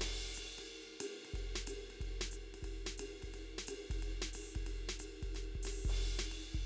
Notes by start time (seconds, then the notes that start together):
0.01 snare, ride
0.34 hi-hat pedal, ride
0.58 ride
1.00 hi-hat pedal, ride
1.25 ride
1.34 kick, ride
1.55 snare
1.67 hi-hat pedal, ride
1.90 ride
2.01 kick, ride
2.21 snare
2.31 hi-hat pedal, ride
2.54 ride
2.63 kick, ride
2.86 snare
2.98 hi-hat pedal, ride
3.22 kick, ride
3.34 ride
3.58 snare
3.67 hi-hat pedal, ride
3.90 kick, ride
4.02 ride
4.22 snare
4.33 hi-hat pedal, ride
4.55 kick, ride
4.66 ride
4.89 snare
4.99 hi-hat pedal, ride
5.23 kick, ride
5.35 snare, ride
5.55 kick
5.63 snare, hi-hat pedal, ride
5.85 kick, ride
5.99 ride
6.19 snare, ride
6.31 ride
6.55 kick